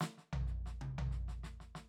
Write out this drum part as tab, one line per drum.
HH |p-----------|
SD |oo-oo--ooooo|
T1 |-----o------|
FT |--o---o-----|